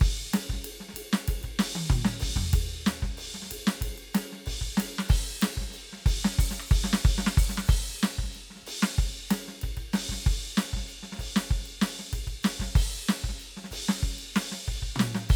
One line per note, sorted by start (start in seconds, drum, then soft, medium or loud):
0.01 kick loud
0.01 ride loud
0.30 kick soft
0.30 hi-hat pedal medium
0.34 snare loud
0.34 ride loud
0.50 kick medium
0.50 snare soft
0.65 ride loud
0.81 snare medium
0.89 snare soft
0.92 kick soft
0.92 snare soft
0.95 snare soft
0.95 hi-hat pedal medium
0.95 ride loud
1.14 snare loud
1.23 snare soft
1.29 kick medium
1.29 ride loud
1.44 kick medium
1.44 ride medium
1.60 snare loud
1.60 hi-hat pedal medium
1.60 ride loud
1.76 high tom loud
1.90 kick loud
1.90 hi-hat pedal medium
1.90 mid tom loud
2.05 snare loud
2.20 kick medium
2.20 hi-hat pedal medium
2.20 ride loud
2.37 kick medium
2.37 floor tom loud
2.54 kick loud
2.54 hi-hat pedal soft
2.54 ride loud
2.86 snare loud
2.86 hi-hat pedal medium
3.03 kick medium
3.03 snare medium
3.18 hi-hat pedal medium
3.18 ride loud
3.35 snare medium
3.43 snare soft
3.46 snare soft
3.51 kick soft
3.51 hi-hat pedal medium
3.51 ride loud
3.68 snare loud
3.82 kick medium
3.82 ride loud
3.99 ride medium
4.14 kick soft
4.14 snare loud
4.14 hi-hat pedal medium
4.14 ride loud
4.33 snare soft
4.47 kick medium
4.47 ride loud
4.62 kick medium
4.78 snare loud
4.78 hi-hat pedal medium
4.78 ride loud
4.99 snare loud
5.08 kick loud
5.08 hi-hat pedal soft
5.08 crash loud
5.39 kick soft
5.39 snare loud
5.39 hi-hat pedal medium
5.39 ride loud
5.58 kick medium
5.58 snare soft
5.70 snare soft
5.70 hi-hat pedal medium
5.70 ride medium
5.76 snare soft
5.93 snare soft
5.98 snare soft
6.07 kick loud
6.07 hi-hat pedal medium
6.07 ride loud
6.25 snare loud
6.39 open hi-hat loud
6.39 kick loud
6.52 snare medium
6.61 cross-stick medium
6.72 kick loud
6.72 ride loud
6.85 snare medium
6.94 snare loud
7.05 kick loud
7.05 hi-hat pedal soft
7.05 ride loud
7.19 snare loud
7.27 snare loud
7.38 open hi-hat loud
7.38 kick loud
7.50 snare medium
7.58 snare medium
7.69 kick loud
7.69 crash loud
8.03 snare loud
8.03 hi-hat pedal medium
8.03 ride medium
8.19 kick medium
8.24 snare soft
8.33 snare soft
8.33 hi-hat pedal medium
8.33 ride soft
8.51 snare soft
8.56 snare soft
8.59 snare soft
8.63 kick soft
8.63 hi-hat pedal medium
8.68 ride loud
8.83 snare loud
8.99 kick loud
8.99 ride medium
9.14 ride soft
9.30 snare loud
9.30 hi-hat pedal medium
9.30 ride loud
9.49 snare medium
9.62 kick medium
9.62 ride medium
9.78 kick medium
9.78 ride medium
9.94 snare loud
9.94 hi-hat pedal medium
9.94 ride loud
10.10 kick medium
10.10 snare medium
10.27 kick loud
10.27 ride loud
10.58 snare loud
10.58 hi-hat pedal medium
10.58 ride medium
10.74 kick medium
10.74 snare soft
10.89 hi-hat pedal medium
10.89 ride medium
11.03 snare medium
11.13 snare medium
11.17 kick medium
11.17 snare medium
11.17 hi-hat pedal medium
11.17 ride loud
11.37 snare loud
11.51 kick medium
11.51 ride medium
11.66 ride medium
11.82 snare loud
11.82 hi-hat pedal medium
11.82 ride loud
12.00 snare medium
12.13 kick medium
12.13 ride medium
12.28 kick medium
12.28 ride soft
12.43 snare loud
12.43 hi-hat pedal medium
12.43 ride loud
12.60 kick medium
12.60 snare medium
12.76 kick loud
12.76 crash loud
13.09 snare loud
13.09 hi-hat pedal medium
13.09 ride medium
13.24 kick medium
13.30 snare soft
13.40 hi-hat pedal medium
13.40 ride soft
13.57 snare medium
13.65 snare medium
13.71 kick soft
13.71 hi-hat pedal medium
13.71 ride loud
13.89 snare loud
14.03 kick medium
14.03 ride medium
14.19 ride medium
14.36 snare loud
14.36 hi-hat pedal medium
14.36 ride loud
14.52 snare medium
14.68 kick medium
14.68 ride medium
14.83 kick medium
14.97 snare loud
14.97 hi-hat pedal medium
14.97 mid tom loud
15.15 snare loud
15.30 kick loud
15.30 crash loud